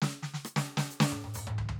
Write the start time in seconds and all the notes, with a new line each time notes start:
0.02 snare
0.23 snare
0.34 snare
0.45 cross-stick, hi-hat pedal
0.56 snare
0.77 snare
0.90 hi-hat pedal
1.00 snare
1.12 high tom
1.24 high tom
1.34 hi-hat pedal, high tom
1.47 high tom
1.58 floor tom
1.69 floor tom